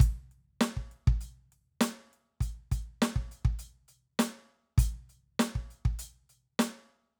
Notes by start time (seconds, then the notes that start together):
0.00 kick, closed hi-hat
0.31 closed hi-hat
0.61 closed hi-hat, snare
0.77 kick
0.91 closed hi-hat
1.07 kick
1.21 closed hi-hat
1.52 closed hi-hat
1.81 closed hi-hat, snare
2.13 closed hi-hat
2.41 closed hi-hat, kick
2.71 closed hi-hat, kick
3.02 closed hi-hat, snare
3.16 kick
3.31 closed hi-hat
3.45 kick
3.59 closed hi-hat
3.88 closed hi-hat
4.19 closed hi-hat, snare
4.78 closed hi-hat, kick
5.09 closed hi-hat
5.39 closed hi-hat, snare
5.55 kick
5.70 closed hi-hat
5.85 kick, crash
5.99 closed hi-hat
6.29 closed hi-hat
6.59 closed hi-hat, snare